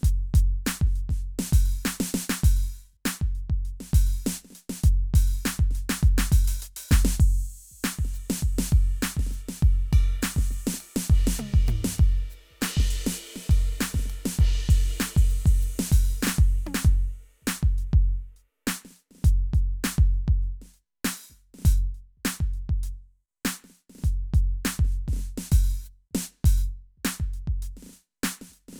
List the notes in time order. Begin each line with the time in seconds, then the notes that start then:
0.01 closed hi-hat, kick, snare
0.34 closed hi-hat, kick
0.65 closed hi-hat, snare, hi-hat pedal
0.81 kick
0.87 snare
0.96 closed hi-hat
1.09 kick, snare
1.25 closed hi-hat
1.39 snare
1.53 open hi-hat, kick
1.83 snare, hi-hat pedal
2.00 snare
2.14 snare
2.29 snare
2.44 open hi-hat, kick
2.93 kick
3.05 closed hi-hat, snare, hi-hat pedal
3.21 kick
3.35 closed hi-hat
3.50 kick, crash, ride
3.65 closed hi-hat
3.80 snare
3.93 open hi-hat, kick
4.25 closed hi-hat, snare, hi-hat pedal
4.45 snare
4.50 snare
4.52 closed hi-hat, snare
4.69 snare
4.83 open hi-hat, kick
5.14 open hi-hat, kick
5.44 closed hi-hat, snare, hi-hat pedal
5.59 kick
5.71 snare
5.75 closed hi-hat
5.89 snare
6.03 open hi-hat, kick
6.18 snare
6.32 open hi-hat, kick
6.48 open hi-hat
6.61 closed hi-hat, hi-hat pedal
6.76 open hi-hat
6.91 kick, snare
7.05 snare
7.20 kick, crash
7.71 kick
7.84 snare, hi-hat pedal, ride
7.99 kick
8.05 snare
8.13 hi-hat pedal, ride bell
8.30 snare
8.42 kick, crash
8.58 snare
8.72 kick, ride
9.02 snare, hi-hat pedal, ride
9.17 kick, snare
9.26 snare
9.31 snare, hi-hat pedal, ride
9.48 snare
9.60 kick, hi-hat pedal, ride
9.92 kick, hi-hat pedal, ride bell
10.22 snare, hi-hat pedal, crash
10.36 kick, snare
10.50 snare, hi-hat pedal, ride
10.67 snare
10.74 snare, hi-hat pedal
10.80 ride
10.96 snare
11.10 kick, ride
11.27 snare
11.35 hi-hat pedal, mid tom
11.54 kick
11.66 floor tom, hi-hat pedal
11.84 snare
11.98 kick, ride
12.30 hi-hat pedal, ride
12.51 kick
12.59 kick, snare, hi-hat pedal, ride
12.77 kick, snare
12.90 hi-hat pedal, crash
13.06 snare
13.21 ride
13.36 snare
13.49 kick, hi-hat pedal, ride bell
13.80 snare, hi-hat pedal, ride bell
13.94 kick, snare
13.99 snare
14.05 snare
14.10 ride
14.25 snare
14.36 kick, hi-hat pedal, ride
14.69 kick, hi-hat pedal, crash
14.98 snare, hi-hat pedal
15.17 kick, crash
15.28 hi-hat pedal
15.46 kick, crash
15.60 hi-hat pedal
15.79 snare
15.92 open hi-hat, kick
16.23 snare, hi-hat pedal
16.27 snare
16.38 kick
16.49 hi-hat pedal
16.66 high tom
16.74 snare
16.85 kick
17.42 kick
17.47 closed hi-hat, snare
17.63 kick
17.78 closed hi-hat
17.93 kick
18.36 closed hi-hat
18.67 closed hi-hat, snare
18.85 snare
18.91 snare
18.96 closed hi-hat
19.11 snare
19.15 snare
19.18 snare
19.22 closed hi-hat, kick, snare
19.54 kick, closed hi-hat
19.84 closed hi-hat, snare
19.98 kick
20.14 closed hi-hat
20.28 kick
20.43 closed hi-hat
20.62 snare
20.66 snare
20.74 closed hi-hat
21.05 open hi-hat, snare
21.30 kick, snare
21.54 snare
21.59 snare
21.62 snare
21.65 open hi-hat, kick, snare, hi-hat pedal
21.94 closed hi-hat
22.17 kick
22.25 closed hi-hat, snare
22.40 kick
22.54 closed hi-hat
22.69 kick
22.73 crash
22.83 closed hi-hat
23.45 closed hi-hat, snare
23.64 snare
23.70 snare
23.75 closed hi-hat
23.89 snare
23.95 snare
23.98 snare
24.02 closed hi-hat, kick, snare
24.34 closed hi-hat, kick
24.65 closed hi-hat, snare
24.79 kick
24.85 snare
24.92 closed hi-hat
25.08 kick, snare, crash
25.13 snare
25.16 snare
25.19 snare
25.24 closed hi-hat
25.38 snare
25.52 open hi-hat, kick
25.83 hi-hat pedal
26.11 kick, snare
26.44 open hi-hat, kick
26.97 kick
27.05 open hi-hat, snare, hi-hat pedal
27.20 kick
27.34 closed hi-hat
27.47 kick, crash
27.52 ride
27.62 closed hi-hat
27.77 snare
27.82 snare
27.86 snare
27.89 snare
27.93 closed hi-hat, snare
28.23 closed hi-hat, snare
28.41 snare
28.48 kick, snare
28.53 closed hi-hat
28.68 snare
28.73 snare
28.76 snare